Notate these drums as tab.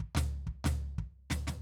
SD |-o--o---oo--|
FT |-o--o---oo--|
BD |o--o--o-----|